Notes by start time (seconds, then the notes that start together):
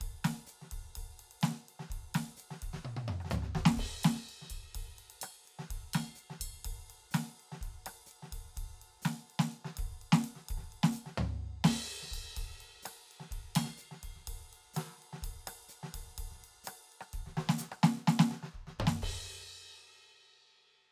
0.01 kick, hi-hat pedal, ride
0.07 kick
0.09 kick
0.25 snare, ride
0.47 hi-hat pedal, ride
0.62 snare
0.72 kick, ride
0.84 snare
0.91 snare
0.96 kick, hi-hat pedal, ride
1.20 ride
1.32 ride
1.42 snare, hi-hat pedal
1.50 snare
1.69 ride
1.80 snare
1.90 kick, hi-hat pedal, ride
1.96 kick
2.15 snare, ride
2.37 hi-hat pedal, ride
2.51 snare
2.62 kick, ride
2.74 snare
2.82 kick, mid tom
2.97 mid tom
3.08 floor tom
3.21 cross-stick
3.25 snare
3.30 hi-hat pedal, floor tom
3.43 snare
3.55 kick, snare
3.66 snare
3.77 kick, hi-hat pedal, crash
3.84 kick
4.04 snare, ride bell
4.13 snare
4.29 ride
4.42 snare
4.50 kick, ride bell
4.75 kick, ride
4.81 kick
4.99 ride
5.10 ride
5.22 cross-stick, hi-hat pedal, ride bell
5.45 hi-hat pedal, ride
5.59 snare
5.70 kick, ride
5.77 kick
5.94 snare, ride bell
6.16 hi-hat pedal, ride
6.30 snare
6.40 kick, ride bell
6.56 snare
6.64 kick, hi-hat pedal, ride
6.90 ride
7.11 snare, hi-hat pedal, ride
7.40 ride
7.52 snare
7.61 kick, hi-hat pedal, ride
7.69 kick
7.86 cross-stick, ride
8.07 hi-hat pedal
8.12 ride
8.23 snare
8.32 kick, ride
8.47 snare
8.52 snare, hi-hat pedal
8.57 kick, snare, ride
8.63 kick
8.65 kick
8.82 ride
9.02 snare, hi-hat pedal, ride
9.30 ride
9.39 snare
9.52 ride
9.65 snare
9.77 kick, ride
9.86 kick
9.90 kick
10.02 ride
10.13 snare
10.24 hi-hat pedal, ride
10.36 snare
10.49 kick, ride
10.58 kick, snare
10.73 ride
10.84 snare
10.92 hi-hat pedal
10.97 ride bell
11.06 snare
11.18 floor tom
11.64 snare, crash
12.03 snare
12.12 kick, hi-hat pedal, ride
12.17 kick
12.37 kick, ride
12.48 snare
12.54 snare
12.61 ride
12.83 cross-stick, hi-hat pedal, ride
13.12 ride
13.20 snare
13.31 kick, hi-hat pedal, ride
13.39 kick
13.56 snare, ride bell
13.64 snare
13.78 hi-hat pedal, ride
13.91 snare
14.03 kick, ride
14.16 snare
14.23 snare
14.28 kick, ride
14.53 ride
14.74 snare, hi-hat pedal, ride
15.02 ride
15.13 snare
15.23 kick, hi-hat pedal, ride
15.30 kick
15.48 cross-stick, ride
15.69 hi-hat pedal
15.73 ride
15.83 snare
15.94 kick, ride
16.10 snare
16.18 kick, hi-hat pedal, ride
16.24 kick
16.31 snare
16.36 snare
16.44 ride
16.64 cross-stick, hi-hat pedal, ride
16.92 ride
17.01 cross-stick
17.14 kick, hi-hat pedal, ride
17.20 kick
17.22 kick
17.27 snare
17.37 snare
17.49 snare
17.58 snare, hi-hat pedal
17.72 cross-stick
17.84 snare
17.97 snare
18.08 snare
18.20 snare
18.31 snare
18.43 snare
18.54 kick
18.67 snare
18.79 kick, mid tom
18.87 snare
19.02 kick, crash
19.09 kick